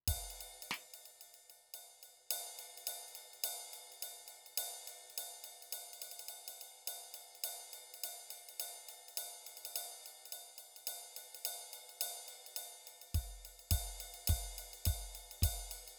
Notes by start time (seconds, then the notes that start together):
0.08 kick, ride
0.15 kick
0.30 ride
0.40 ride
0.62 ride
0.71 snare, ride
0.94 ride
1.05 ride
1.21 ride
1.34 ride
1.50 ride
1.74 ride
2.03 ride
2.30 ride
2.59 ride
2.77 ride
2.87 ride
3.08 ride
3.15 ride
3.33 ride
3.44 ride
3.73 ride
3.92 ride
4.02 ride
4.28 ride
4.46 ride
4.57 ride
4.87 ride
5.10 ride
5.18 ride
5.44 ride
5.62 ride
5.72 ride
5.93 ride
6.02 ride
6.11 ride
6.19 ride
6.28 ride
6.48 ride
6.61 ride
6.87 ride
7.14 ride
7.35 ride
7.44 ride
7.73 ride
7.94 ride
8.03 ride
8.30 ride
8.49 ride
8.60 ride
8.88 ride
9.08 ride
9.17 ride
9.46 ride
9.57 ride
9.65 ride
9.76 ride
10.06 ride
10.25 ride
10.32 ride
10.58 ride
10.76 ride
10.87 ride
11.16 ride
11.35 ride
11.45 ride
11.73 ride
11.89 ride
12.01 ride
12.28 ride
12.46 ride
12.56 ride
12.87 ride
13.01 ride
13.14 kick, ride
13.45 ride
13.59 ride
13.71 kick, ride
14.00 ride
14.14 ride
14.27 kick, ride
14.58 ride
14.73 ride
14.85 kick, ride
15.15 ride
15.31 ride
15.42 kick, ride
15.71 ride
15.88 ride